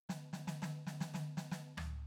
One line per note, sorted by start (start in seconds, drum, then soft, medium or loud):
0.09 snare soft
0.09 high tom soft
0.33 snare soft
0.33 high tom soft
0.48 snare soft
0.48 high tom soft
0.62 snare soft
0.62 high tom medium
0.87 snare soft
0.87 high tom soft
1.01 snare soft
1.01 high tom medium
1.14 snare soft
1.14 high tom medium
1.37 snare soft
1.37 high tom soft
1.52 snare soft
1.52 high tom soft
1.78 cross-stick medium
1.78 floor tom medium